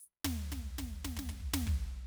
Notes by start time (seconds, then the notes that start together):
0.00 hi-hat pedal
0.24 snare, floor tom
0.52 snare, floor tom
0.78 snare, floor tom
1.04 snare, floor tom
1.16 snare, floor tom
1.27 floor tom, hi-hat pedal
1.31 snare
1.40 kick
1.53 snare, floor tom
1.67 kick